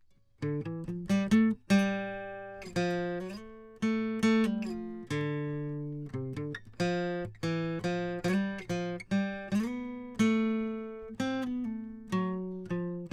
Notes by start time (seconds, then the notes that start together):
0.43 D3
0.67 E3
0.89 F3
1.11 G3
1.32 A3
1.71 G3
2.77 F3
3.31 A3
3.83 A3
4.24 A3
4.46 G3
4.67 F3
5.12 D3
6.15 C3
6.38 D3
6.81 F3
7.44 E3
7.85 F3
8.25 G3
8.71 F3
9.12 G3
9.53 B3
10.20 A3
11.21 C4
11.44 B3
11.66 A3
12.14 F#3
12.72 F3